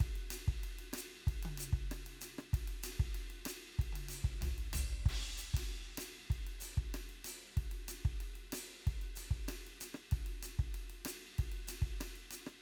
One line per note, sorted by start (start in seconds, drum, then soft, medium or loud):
0.01 kick medium
0.01 ride medium
0.16 ride medium
0.31 hi-hat pedal medium
0.31 ride loud
0.48 kick medium
0.64 ride medium
0.79 ride medium
0.94 cross-stick medium
0.94 ride loud
0.98 hi-hat pedal loud
1.28 kick medium
1.28 ride medium
1.44 high tom medium
1.44 ride medium
1.58 hi-hat pedal loud
1.58 ride medium
1.73 kick medium
1.92 cross-stick medium
1.92 ride medium
2.07 ride medium
2.22 hi-hat pedal medium
2.22 ride medium
2.39 cross-stick medium
2.54 kick medium
2.54 ride medium
2.68 ride medium
2.84 hi-hat pedal medium
2.84 ride loud
3.00 kick medium
3.15 ride medium
3.31 ride medium
3.46 cross-stick medium
3.46 hi-hat pedal loud
3.46 ride loud
3.79 kick soft
3.79 ride medium
3.93 high tom medium
3.93 ride medium
4.09 hi-hat pedal medium
4.09 ride medium
4.25 kick soft
4.42 floor tom medium
4.42 ride loud
4.59 ride medium
4.74 floor tom medium
4.74 hi-hat pedal loud
4.74 ride bell loud
5.06 kick medium
5.06 ride loud
5.39 hi-hat pedal medium
5.55 kick soft
5.55 ride loud
5.98 cross-stick medium
5.98 hi-hat pedal medium
5.98 ride loud
6.31 kick soft
6.31 ride medium
6.47 ride medium
6.61 hi-hat pedal medium
6.61 ride medium
6.78 kick soft
6.87 kick soft
6.95 cross-stick medium
6.95 ride medium
7.10 ride medium
7.25 hi-hat pedal loud
7.25 ride loud
7.58 kick soft
7.58 ride medium
7.72 ride medium
7.89 hi-hat pedal loud
7.89 ride loud
8.06 kick medium
8.21 ride medium
8.36 ride medium
8.53 cross-stick medium
8.53 hi-hat pedal loud
8.53 ride loud
8.87 kick soft
8.87 ride medium
9.02 ride medium
9.16 hi-hat pedal medium
9.16 ride medium
9.31 kick soft
9.49 cross-stick medium
9.49 ride loud
9.68 ride medium
9.81 hi-hat pedal loud
9.81 ride medium
9.95 cross-stick medium
10.12 kick medium
10.12 ride medium
10.27 ride medium
10.44 hi-hat pedal medium
10.44 ride medium
10.60 kick soft
10.75 ride medium
10.91 ride medium
11.06 cross-stick medium
11.06 hi-hat pedal loud
11.06 ride loud
11.39 kick soft
11.39 ride medium
11.53 ride medium
11.68 hi-hat pedal medium
11.68 ride loud
11.82 kick soft
12.01 cross-stick medium
12.01 ride loud
12.16 ride medium
12.32 hi-hat pedal loud
12.32 ride medium
12.47 cross-stick medium